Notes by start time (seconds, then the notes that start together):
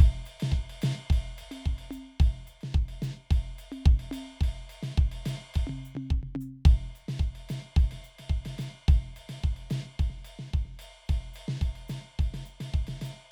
0.01 kick, ride
0.27 hi-hat pedal, ride
0.42 snare, ride
0.54 kick
0.72 ride
0.83 kick, snare, hi-hat pedal, ride
1.12 kick, ride
1.39 kick, hi-hat pedal, ride
1.53 high tom, ride
1.68 kick
1.80 ride
1.93 kick, hi-hat pedal, high tom, ride
2.22 kick, ride
2.49 kick, hi-hat pedal, ride
2.63 snare, ride
2.76 kick
2.90 ride
3.04 kick, snare, hi-hat pedal, ride
3.33 kick, ride
3.60 hi-hat pedal, ride
3.74 high tom, ride
3.88 kick
4.01 ride
4.13 hi-hat pedal, high tom, ride
4.43 kick, ride
4.71 hi-hat pedal, ride
4.85 snare, ride
5.00 kick
5.14 ride
5.28 snare, hi-hat pedal, ride
5.56 kick, ride
5.69 floor tom, high tom
5.87 hi-hat pedal
5.97 floor tom, high tom
6.12 kick
6.25 floor tom
6.37 floor tom, high tom
6.43 hi-hat pedal
6.67 kick, hi-hat pedal, ride
6.97 hi-hat pedal, ride
7.10 snare, ride
7.21 kick, hi-hat pedal
7.37 ride
7.51 snare, hi-hat pedal, ride
7.78 kick, ride
7.93 snare, ride
8.06 hi-hat pedal
8.20 snare, ride
8.31 kick, hi-hat pedal
8.47 snare, ride
8.60 snare, hi-hat pedal, ride
8.90 kick, ride
9.05 snare
9.18 kick, hi-hat pedal, ride
9.31 snare, ride
9.43 kick, hi-hat pedal
9.58 ride
9.72 snare, hi-hat pedal, ride
9.86 snare
10.01 kick, ride
10.12 snare
10.27 hi-hat pedal, ride
10.41 snare
10.55 kick, ride
10.67 snare
10.81 hi-hat pedal, ride
11.08 kick, hi-hat pedal, ride
11.21 snare
11.35 hi-hat pedal, ride
11.50 snare
11.63 kick, ride
11.77 ride
11.90 snare, hi-hat pedal, ride
12.07 snare
12.21 kick, ride
12.36 snare, ride
12.47 hi-hat pedal
12.62 snare, ride
12.76 kick
12.89 snare, ride
13.03 snare, hi-hat pedal, ride